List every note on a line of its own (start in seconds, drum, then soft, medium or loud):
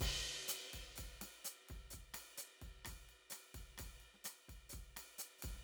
0.01 kick medium
0.01 ride loud
0.07 kick soft
0.48 hi-hat pedal loud
0.48 ride medium
0.67 cross-stick soft
0.74 kick soft
0.74 ride medium
0.79 kick soft
0.96 kick soft
0.96 hi-hat pedal soft
0.96 ride medium
1.04 kick soft
1.21 snare soft
1.21 ride medium
1.45 hi-hat pedal medium
1.45 ride soft
1.69 kick soft
1.69 ride soft
1.75 kick soft
1.91 kick soft
1.91 hi-hat pedal soft
1.91 ride soft
1.99 kick soft
2.14 cross-stick soft
2.14 ride medium
2.38 hi-hat pedal medium
2.38 ride soft
2.62 kick soft
2.62 ride soft
2.67 kick soft
2.85 kick soft
2.85 cross-stick soft
2.85 snare soft
2.85 hi-hat pedal soft
2.85 ride medium
2.92 kick soft
3.09 ride soft
3.30 cross-stick soft
3.30 hi-hat pedal medium
3.30 ride medium
3.55 kick soft
3.55 ride soft
3.60 kick soft
3.78 kick soft
3.78 cross-stick soft
3.78 snare soft
3.78 hi-hat pedal soft
3.78 ride medium
3.85 kick soft
4.00 ride soft
4.14 snare soft
4.25 cross-stick soft
4.25 hi-hat pedal medium
4.25 ride medium
4.49 kick soft
4.49 ride soft
4.70 kick soft
4.70 hi-hat pedal soft
4.74 ride soft
4.78 kick soft
4.97 cross-stick soft
4.97 ride medium
5.19 hi-hat pedal medium
5.19 ride soft
5.39 hi-hat pedal soft
5.39 ride medium
5.44 kick soft
5.50 kick soft
5.55 snare soft